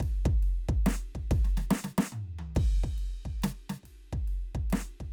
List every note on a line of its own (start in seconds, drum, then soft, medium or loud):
0.00 kick medium
0.00 ride medium
0.25 kick loud
0.43 ride medium
0.69 kick loud
0.86 snare loud
0.86 ride medium
1.15 kick medium
1.31 kick loud
1.31 ride medium
1.44 snare soft
1.57 snare medium
1.71 snare loud
1.84 snare medium
1.98 snare loud
2.12 mid tom medium
2.39 high tom medium
2.55 kick loud
2.55 crash medium
2.83 kick medium
2.98 ride medium
3.25 kick medium
3.42 snare loud
3.42 ride medium
3.69 snare medium
3.83 kick soft
3.83 ride medium
4.13 kick medium
4.28 ride medium
4.55 kick medium
4.70 snare loud
4.70 ride medium
5.00 kick medium